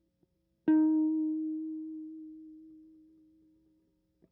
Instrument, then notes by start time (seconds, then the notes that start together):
electric guitar
0.69 D#4